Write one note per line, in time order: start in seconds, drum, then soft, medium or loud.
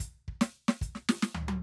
0.00 closed hi-hat loud
0.00 kick soft
0.28 kick soft
0.41 closed hi-hat loud
0.41 snare loud
0.68 snare loud
0.81 closed hi-hat medium
0.81 kick medium
0.95 snare medium
1.09 snare loud
1.22 snare loud
1.35 floor tom loud
1.48 high tom loud